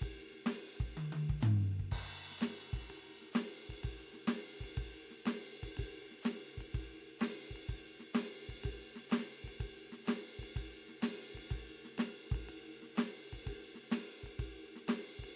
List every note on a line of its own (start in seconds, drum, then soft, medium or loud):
0.01 kick soft
0.01 ride medium
0.31 snare soft
0.46 snare medium
0.46 hi-hat pedal medium
0.46 ride loud
0.80 kick soft
0.97 high tom medium
1.12 closed hi-hat soft
1.12 high tom medium
1.29 kick soft
1.40 floor tom loud
1.40 hi-hat pedal medium
1.79 kick soft
1.91 kick soft
1.91 crash medium
2.31 snare soft
2.38 hi-hat pedal medium
2.38 ride loud
2.42 snare medium
2.73 kick soft
2.73 ride medium
2.90 ride medium
3.21 snare soft
3.33 snare medium
3.33 hi-hat pedal medium
3.33 ride loud
3.69 kick soft
3.69 ride medium
3.83 kick soft
3.83 ride medium
4.13 snare soft
4.27 snare medium
4.27 hi-hat pedal medium
4.27 ride loud
4.60 kick soft
4.60 ride medium
4.77 kick soft
4.77 ride medium
5.11 snare soft
5.25 snare medium
5.25 hi-hat pedal loud
5.25 ride loud
5.63 kick soft
5.63 ride medium
5.72 hi-hat pedal soft
5.77 kick soft
5.77 ride medium
6.11 snare soft
6.22 snare medium
6.22 hi-hat pedal loud
6.22 ride loud
6.57 kick soft
6.57 ride medium
6.71 kick soft
6.71 hi-hat pedal soft
6.71 ride medium
7.19 snare medium
7.19 hi-hat pedal medium
7.19 ride loud
7.50 kick soft
7.56 ride medium
7.66 kick soft
7.66 hi-hat pedal soft
7.66 ride medium
8.00 snare soft
8.13 snare medium
8.13 hi-hat pedal loud
8.13 ride loud
8.49 kick soft
8.49 ride medium
8.63 kick soft
8.63 ride loud
8.96 snare soft
9.09 snare medium
9.09 hi-hat pedal medium
9.09 ride loud
9.18 snare soft
9.44 kick soft
9.44 ride medium
9.60 kick soft
9.60 ride medium
9.92 snare soft
10.05 snare medium
10.05 hi-hat pedal medium
10.05 ride loud
10.39 kick soft
10.43 ride medium
10.56 kick soft
10.56 ride medium
10.88 snare soft
11.01 snare medium
11.01 hi-hat pedal loud
11.01 ride loud
11.35 kick soft
11.35 ride medium
11.51 kick soft
11.51 ride medium
11.85 snare soft
11.98 snare medium
11.98 hi-hat pedal loud
11.98 ride loud
12.31 kick medium
12.31 ride medium
12.46 hi-hat pedal soft
12.46 ride medium
12.82 snare soft
12.95 snare medium
12.95 hi-hat pedal medium
12.95 ride loud
13.33 kick soft
13.33 ride medium
13.42 hi-hat pedal soft
13.46 kick soft
13.46 ride loud
13.75 snare soft
13.90 snare medium
13.90 hi-hat pedal medium
13.90 ride loud
14.23 kick soft
14.23 ride medium
14.39 kick soft
14.39 ride medium
14.76 snare soft
14.87 snare medium
14.87 hi-hat pedal loud
14.87 ride loud
15.19 kick soft
15.24 ride medium